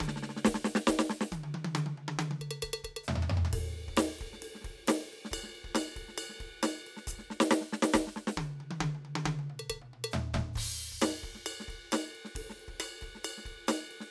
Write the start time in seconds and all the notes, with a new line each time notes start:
0.01 kick, hi-hat pedal, high tom
0.08 kick, snare
0.17 snare
0.23 snare
0.30 snare
0.37 snare
0.45 kick, snare
0.50 hi-hat pedal
0.55 snare
0.76 snare
0.88 kick, snare, hi-hat pedal
1.00 snare
1.10 snare
1.22 snare
1.32 kick, hi-hat pedal, high tom
1.44 high tom
1.55 high tom
1.65 high tom
1.76 hi-hat pedal, high tom
1.87 high tom
1.98 high tom
2.09 high tom
2.17 kick, hi-hat pedal, high tom
2.32 high tom
2.41 kick, percussion
2.51 percussion
2.62 kick, hi-hat pedal, percussion
2.74 percussion
2.84 kick, percussion
2.97 percussion
3.04 hi-hat pedal
3.09 floor tom
3.16 floor tom
3.23 floor tom
3.30 floor tom
3.38 floor tom
3.46 floor tom
3.53 kick, hi-hat pedal, ride
3.72 kick
3.89 kick
3.95 kick, snare, ride
4.00 hi-hat pedal
4.19 kick, ride
4.28 kick
4.34 snare
4.43 hi-hat pedal, ride
4.56 snare
4.62 kick, snare, ride
4.71 kick
4.88 snare, hi-hat pedal, ride
5.14 ride
5.26 snare
5.32 kick, hi-hat pedal, ride bell
5.38 kick
5.44 snare
5.49 snare
5.56 ride
5.65 kick
5.76 snare, hi-hat pedal, ride bell
5.97 kick, ride
6.03 kick
6.09 snare
6.18 hi-hat pedal, ride bell
6.30 snare
6.37 kick, snare
6.41 ride
6.64 snare, hi-hat pedal, ride bell
6.87 ride
6.97 snare
7.08 kick, hi-hat pedal, ride bell
7.15 kick
7.19 snare
7.31 snare
7.41 snare
7.52 snare
7.62 snare
7.73 snare
7.83 snare
7.93 kick, snare, hi-hat pedal
8.00 cross-stick
8.08 snare
8.17 snare
8.28 snare
8.37 kick, high tom
8.43 kick
8.54 high tom
8.61 high tom
8.71 high tom
8.81 kick, hi-hat pedal, high tom
8.95 high tom
9.06 high tom
9.16 high tom
9.25 kick, hi-hat pedal
9.31 kick
9.40 high tom
9.50 mid tom
9.60 percussion
9.70 kick, hi-hat pedal, percussion
9.82 mid tom
9.94 mid tom
10.05 percussion
10.12 hi-hat pedal, floor tom
10.34 kick, floor tom
10.54 kick, hi-hat pedal, crash
10.72 kick
10.92 kick
11.02 snare, hi-hat pedal, ride bell
11.11 snare
11.24 kick, ride
11.36 snare
11.47 hi-hat pedal, ride bell
11.61 snare
11.69 kick, ride
11.74 kick
11.92 snare, hi-hat pedal, ride bell
12.16 ride
12.25 snare
12.36 kick, hi-hat pedal, ride
12.42 kick
12.50 snare
12.60 ride
12.69 kick
12.81 cross-stick, hi-hat pedal, ride bell
13.02 kick, ride
13.16 snare
13.24 hi-hat pedal, ride bell
13.38 snare
13.46 kick, ride
13.52 kick
13.68 snare, hi-hat pedal, ride bell
13.92 ride
14.01 snare